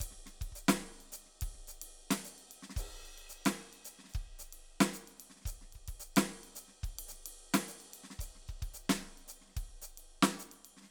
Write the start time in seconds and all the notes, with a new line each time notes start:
0.01 kick, hi-hat pedal, ride
0.11 snare
0.26 snare, ride
0.42 kick, ride
0.53 kick, hi-hat pedal
0.69 snare, ride
1.01 ride
1.13 hi-hat pedal, ride
1.26 snare
1.42 kick, ride
1.55 snare
1.68 hi-hat pedal, ride
1.82 ride
2.11 snare, ride
2.25 hi-hat pedal
2.39 ride
2.52 ride
2.63 snare
2.70 snare
2.75 kick, snare, hi-hat pedal, crash
3.06 ride
3.18 ride
3.30 hi-hat pedal
3.46 snare, ride
3.74 ride
3.85 hi-hat pedal, ride
3.99 snare
4.05 snare
4.09 snare, hi-hat pedal
4.15 kick, ride
4.40 hi-hat pedal, ride
4.53 ride
4.81 snare, ride
4.94 snare, hi-hat pedal
5.01 snare
5.08 ride
5.18 hi-hat pedal, ride
5.30 snare
5.36 snare
5.41 snare
5.46 kick, hi-hat pedal, ride
5.62 snare
5.73 kick, ride
5.88 kick, ride
6.00 hi-hat pedal
6.17 snare, ride
6.44 snare, ride
6.56 hi-hat pedal, ride
6.69 snare
6.84 kick, ride
6.99 ride
7.09 snare, hi-hat pedal
7.26 ride
7.55 snare, ride
7.69 hi-hat pedal
7.81 ride
7.93 hi-hat pedal, ride
8.04 snare
8.11 snare
8.20 kick, hi-hat pedal, ride
8.36 snare
8.49 kick, ride
8.63 kick, ride
8.74 hi-hat pedal
8.90 snare, ride
9.10 snare
9.18 ride
9.29 hi-hat pedal, ride
9.42 snare
9.46 snare
9.49 snare
9.52 snare
9.57 kick, ride
9.70 snare
9.74 snare
9.82 hi-hat pedal
9.86 ride
9.98 ride
10.23 snare, ride
10.40 hi-hat pedal
10.52 ride
10.65 ride
10.77 snare
10.81 snare
10.84 snare